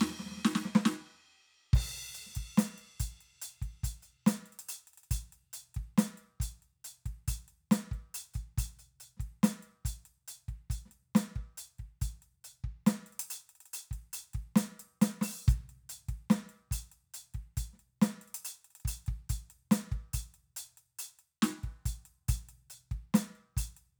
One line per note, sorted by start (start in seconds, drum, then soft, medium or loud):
0.01 snare loud
0.10 snare soft
0.19 snare soft
0.26 snare soft
0.31 snare soft
0.37 snare soft
0.45 snare loud
0.55 snare loud
0.65 snare medium
0.86 snare loud
1.73 kick loud
1.73 crash loud
1.93 closed hi-hat soft
2.15 closed hi-hat medium
2.26 snare soft
2.35 kick medium
2.35 closed hi-hat medium
2.58 closed hi-hat loud
2.58 snare loud
2.78 closed hi-hat soft
3.00 closed hi-hat loud
3.00 kick medium
3.21 closed hi-hat soft
3.42 closed hi-hat loud
3.62 kick medium
3.62 closed hi-hat soft
3.84 closed hi-hat loud
3.84 kick medium
4.03 closed hi-hat soft
4.27 closed hi-hat loud
4.27 snare loud
4.46 closed hi-hat soft
4.52 closed hi-hat soft
4.59 closed hi-hat medium
4.69 closed hi-hat loud
4.87 closed hi-hat soft
4.94 closed hi-hat soft
4.98 closed hi-hat soft
5.03 closed hi-hat soft
5.11 closed hi-hat loud
5.11 kick medium
5.32 closed hi-hat soft
5.53 closed hi-hat loud
5.75 kick medium
5.75 closed hi-hat soft
5.98 closed hi-hat loud
5.98 snare loud
6.18 closed hi-hat soft
6.40 closed hi-hat loud
6.40 kick medium
6.62 closed hi-hat soft
6.85 closed hi-hat medium
7.06 kick soft
7.06 closed hi-hat soft
7.28 closed hi-hat loud
7.28 kick medium
7.48 closed hi-hat soft
7.71 closed hi-hat loud
7.71 snare loud
7.92 kick medium
7.92 closed hi-hat soft
8.14 closed hi-hat loud
8.34 closed hi-hat soft
8.34 kick medium
8.58 closed hi-hat loud
8.58 kick medium
8.79 closed hi-hat soft
9.00 closed hi-hat medium
9.17 kick medium
9.17 snare soft
9.17 closed hi-hat soft
9.43 closed hi-hat loud
9.43 snare loud
9.63 closed hi-hat soft
9.85 closed hi-hat loud
9.85 kick medium
10.05 closed hi-hat soft
10.28 closed hi-hat loud
10.48 kick soft
10.48 closed hi-hat soft
10.70 closed hi-hat medium
10.70 kick medium
10.86 snare soft
10.91 closed hi-hat soft
11.15 closed hi-hat loud
11.15 snare loud
11.36 kick medium
11.36 closed hi-hat soft
11.58 closed hi-hat loud
11.79 kick soft
11.79 closed hi-hat soft
12.02 closed hi-hat medium
12.02 kick medium
12.22 closed hi-hat soft
12.44 closed hi-hat medium
12.64 kick medium
12.64 closed hi-hat soft
12.87 closed hi-hat loud
12.87 snare loud
13.06 closed hi-hat soft
13.13 closed hi-hat soft
13.20 closed hi-hat loud
13.30 closed hi-hat loud
13.49 closed hi-hat soft
13.55 closed hi-hat soft
13.61 closed hi-hat soft
13.66 closed hi-hat soft
13.73 closed hi-hat loud
13.91 kick soft
13.91 closed hi-hat soft
14.13 closed hi-hat loud
14.34 kick medium
14.34 closed hi-hat soft
14.56 closed hi-hat loud
14.56 snare loud
14.80 closed hi-hat medium
15.02 closed hi-hat loud
15.02 snare loud
15.21 open hi-hat loud
15.21 snare medium
15.48 kick loud
15.48 closed hi-hat soft
15.48 hi-hat pedal medium
15.69 closed hi-hat soft
15.89 closed hi-hat loud
16.09 kick medium
16.09 closed hi-hat soft
16.30 closed hi-hat medium
16.30 snare loud
16.49 closed hi-hat soft
16.71 closed hi-hat loud
16.71 kick medium
16.92 closed hi-hat soft
17.14 closed hi-hat loud
17.34 kick soft
17.34 closed hi-hat soft
17.57 closed hi-hat loud
17.57 kick medium
17.73 snare soft
17.79 closed hi-hat soft
18.02 closed hi-hat loud
18.02 snare loud
18.22 closed hi-hat soft
18.28 closed hi-hat soft
18.35 closed hi-hat loud
18.45 closed hi-hat loud
18.58 closed hi-hat soft
18.65 closed hi-hat soft
18.71 closed hi-hat soft
18.75 closed hi-hat soft
18.80 closed hi-hat soft
18.85 closed hi-hat loud
18.85 kick medium
19.07 kick medium
19.07 closed hi-hat soft
19.30 closed hi-hat loud
19.30 kick medium
19.50 closed hi-hat soft
19.71 closed hi-hat loud
19.71 snare loud
19.92 kick medium
19.92 closed hi-hat soft
20.14 closed hi-hat loud
20.14 kick medium
20.34 closed hi-hat soft
20.57 closed hi-hat loud
20.77 closed hi-hat soft
20.99 closed hi-hat loud
21.19 closed hi-hat soft
21.42 closed hi-hat loud
21.42 snare loud
21.63 kick soft
21.63 closed hi-hat soft
21.86 closed hi-hat loud
21.86 kick medium
22.05 closed hi-hat soft
22.28 closed hi-hat loud
22.28 kick medium
22.49 closed hi-hat soft
22.70 closed hi-hat medium
22.91 kick medium
22.91 closed hi-hat soft
23.14 closed hi-hat loud
23.14 snare loud
23.35 closed hi-hat soft
23.57 closed hi-hat loud
23.57 kick medium
23.77 closed hi-hat soft